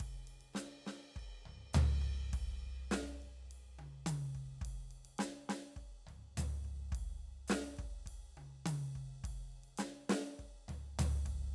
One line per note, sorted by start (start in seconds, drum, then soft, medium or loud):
0.01 kick soft
0.01 ride soft
0.28 ride soft
0.41 ride soft
0.54 snare medium
0.54 hi-hat pedal medium
0.54 ride soft
0.86 snare soft
0.86 ride soft
1.16 kick soft
1.16 ride soft
1.46 floor tom soft
1.74 floor tom loud
1.74 hi-hat pedal medium
1.74 ride medium
2.02 kick soft
2.02 ride soft
2.34 kick soft
2.34 ride soft
2.58 ride soft
2.92 snare medium
2.92 hi-hat pedal medium
2.92 ride soft
3.23 ride soft
3.52 ride soft
3.79 high tom soft
3.79 ride soft
4.07 hi-hat pedal medium
4.07 high tom medium
4.07 ride medium
4.35 kick soft
4.35 ride soft
4.62 kick soft
4.62 ride soft
4.91 ride soft
5.06 ride soft
5.19 snare medium
5.19 hi-hat pedal medium
5.19 ride soft
5.50 snare medium
5.50 ride soft
5.77 kick soft
5.77 ride soft
6.07 floor tom soft
6.07 ride soft
6.38 floor tom medium
6.38 hi-hat pedal medium
6.38 ride medium
6.65 kick soft
6.65 ride soft
6.93 kick soft
6.93 ride soft
7.18 ride soft
7.48 snare medium
7.48 hi-hat pedal medium
7.48 ride medium
7.78 kick soft
7.78 ride soft
8.06 kick soft
8.06 ride soft
8.38 high tom soft
8.38 ride soft
8.66 hi-hat pedal medium
8.66 high tom medium
8.66 ride medium
8.96 kick soft
8.96 ride soft
9.24 kick soft
9.24 ride soft
9.53 ride soft
9.64 ride soft
9.78 snare medium
9.78 hi-hat pedal medium
9.78 ride soft
10.10 snare loud
10.10 ride medium
10.40 kick soft
10.40 ride soft
10.69 floor tom medium
10.69 ride soft
10.99 floor tom loud
10.99 hi-hat pedal medium
10.99 ride medium
11.26 kick soft
11.26 ride soft